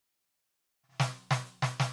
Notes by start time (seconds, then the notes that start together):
0.84 snare
0.89 snare
0.92 snare
0.94 snare
1.00 snare
1.31 snare
1.45 hi-hat pedal
1.62 snare
1.80 snare